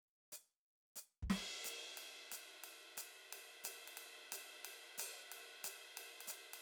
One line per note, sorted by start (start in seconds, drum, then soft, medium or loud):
0.32 hi-hat pedal medium
0.96 hi-hat pedal medium
1.22 kick soft
1.30 snare medium
1.30 ride medium
1.64 hi-hat pedal medium
1.64 ride medium
1.97 ride medium
2.32 hi-hat pedal medium
2.32 ride medium
2.64 ride medium
2.97 hi-hat pedal medium
2.97 ride medium
3.32 ride medium
3.64 hi-hat pedal medium
3.64 ride loud
3.87 ride medium
3.97 ride medium
4.32 hi-hat pedal medium
4.32 ride loud
4.65 ride medium
4.98 hi-hat pedal medium
4.98 ride loud
5.32 ride medium
5.64 hi-hat pedal medium
5.64 ride loud
5.97 ride medium
6.20 ride medium
6.27 hi-hat pedal medium
6.27 ride medium
6.53 ride medium